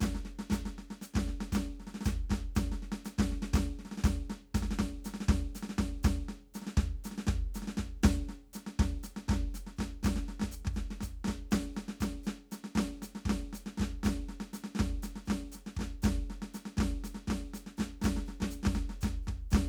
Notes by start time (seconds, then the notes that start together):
0.01 kick, snare, hi-hat pedal
0.03 snare
0.15 snare
0.25 snare
0.39 snare
0.50 kick, snare, hi-hat pedal
0.53 snare
0.66 snare
0.79 snare
0.91 snare
1.02 snare, hi-hat pedal
1.14 kick, snare
1.17 snare
1.28 snare
1.41 snare
1.53 kick, snare, hi-hat pedal
1.56 snare
1.80 snare
1.87 snare
1.95 snare
2.01 snare, hi-hat pedal
2.06 kick, snare
2.30 kick, snare
2.32 snare
2.56 kick, snare, hi-hat pedal
2.72 snare
2.83 snare
2.92 snare
3.05 snare, hi-hat pedal
3.19 kick, snare
3.32 snare
3.43 snare
3.54 kick, snare, hi-hat pedal
3.56 snare
3.79 snare
3.85 snare
3.92 snare
3.98 snare
4.02 kick, snare, hi-hat pedal
4.06 snare
4.30 snare
4.55 kick, snare, hi-hat pedal
4.63 snare
4.71 snare
4.79 kick, snare
5.05 snare, hi-hat pedal
5.14 snare
5.21 snare
5.29 kick, snare
5.55 snare, hi-hat pedal
5.63 snare
5.70 snare
5.79 kick, snare
6.04 kick, snare, hi-hat pedal
6.29 snare
6.54 snare, hi-hat pedal
6.62 snare
6.67 snare
6.77 kick, snare
7.04 snare, hi-hat pedal
7.12 snare
7.18 snare
7.27 kick, snare
7.55 snare, hi-hat pedal
7.62 snare
7.68 snare
7.78 kick, snare
8.03 kick, snare, hi-hat pedal
8.29 snare
8.54 snare, hi-hat pedal
8.67 snare
8.80 kick, snare
9.04 snare, hi-hat pedal
9.17 snare
9.29 kick, snare
9.31 snare
9.55 snare, hi-hat pedal
9.67 snare
9.77 kick, snare, hi-hat pedal
9.81 snare
10.03 kick, snare, hi-hat pedal
10.06 snare
10.16 snare
10.29 snare
10.40 snare
10.42 kick, snare
10.52 hi-hat pedal
10.65 kick, snare
10.74 snare, hi-hat pedal
10.91 snare
11.03 kick, hi-hat pedal
11.25 snare
11.28 kick, snare
11.51 kick, snare, hi-hat pedal
11.73 snare, hi-hat pedal
11.89 snare
12.01 kick, snare, hi-hat pedal
12.24 snare, hi-hat pedal
12.52 snare, hi-hat pedal
12.64 snare
12.75 kick, snare, hi-hat pedal
12.78 snare
13.03 snare, hi-hat pedal
13.16 snare
13.26 kick, snare
13.30 snare
13.53 snare, hi-hat pedal
13.67 snare
13.78 kick, snare
13.81 snare
14.04 kick, snare, hi-hat pedal
14.07 snare
14.29 snare
14.41 snare
14.54 snare, hi-hat pedal
14.64 snare
14.75 snare
14.80 kick, snare
15.03 snare, hi-hat pedal
15.16 snare
15.26 kick, snare, hi-hat pedal
15.31 snare
15.52 snare, hi-hat pedal
15.67 snare
15.75 kick, hi-hat pedal
15.79 snare
15.81 snare
16.03 kick, snare, hi-hat pedal
16.06 snare
16.30 snare
16.42 snare
16.54 snare, hi-hat pedal
16.66 snare
16.77 kick, snare, hi-hat pedal
16.81 snare
17.04 snare, hi-hat pedal
17.15 snare
17.28 kick, snare
17.31 snare
17.54 snare, hi-hat pedal
17.67 snare
17.78 kick, snare, hi-hat pedal
17.80 snare
18.02 kick, snare, hi-hat pedal
18.06 snare
18.17 snare
18.26 snare, hi-hat pedal
18.41 kick, snare
18.42 snare
18.51 hi-hat pedal
18.64 snare
18.66 kick, snare
18.74 snare, hi-hat pedal
18.90 snare
19.01 kick, snare, hi-hat pedal
19.23 hi-hat pedal
19.28 kick, snare
19.51 kick, snare, hi-hat pedal
19.55 snare